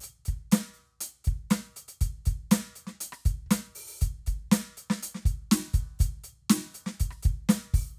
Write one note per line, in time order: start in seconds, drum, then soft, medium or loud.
0.01 closed hi-hat medium
0.01 hi-hat pedal medium
0.26 closed hi-hat medium
0.26 kick soft
0.52 closed hi-hat loud
0.52 snare loud
0.74 open hi-hat soft
1.01 closed hi-hat loud
1.25 closed hi-hat medium
1.25 kick medium
1.51 closed hi-hat medium
1.51 snare loud
1.77 closed hi-hat medium
1.89 closed hi-hat medium
2.01 closed hi-hat medium
2.01 kick medium
2.26 closed hi-hat medium
2.26 kick medium
2.52 closed hi-hat loud
2.52 snare loud
2.76 closed hi-hat medium
2.88 snare soft
3.01 closed hi-hat loud
3.13 cross-stick medium
3.26 closed hi-hat medium
3.26 kick medium
3.47 kick soft
3.51 closed hi-hat loud
3.51 snare loud
3.76 open hi-hat medium
3.88 open hi-hat medium
4.01 closed hi-hat medium
4.01 kick medium
4.01 hi-hat pedal soft
4.27 closed hi-hat medium
4.27 kick medium
4.49 kick soft
4.49 snare loud
4.53 closed hi-hat loud
4.78 closed hi-hat medium
4.91 snare medium
5.03 closed hi-hat loud
5.15 snare soft
5.26 closed hi-hat medium
5.26 kick medium
5.52 closed hi-hat loud
5.52 snare loud
5.74 closed hi-hat medium
5.74 kick medium
6.00 closed hi-hat medium
6.00 kick medium
6.00 hi-hat pedal medium
6.24 closed hi-hat medium
6.50 closed hi-hat loud
6.50 snare loud
6.74 closed hi-hat medium
6.74 hi-hat pedal soft
6.87 snare medium
7.00 closed hi-hat medium
7.00 kick medium
7.11 cross-stick soft
7.23 closed hi-hat medium
7.23 kick medium
7.50 closed hi-hat medium
7.50 snare loud
7.74 open hi-hat medium
7.74 kick medium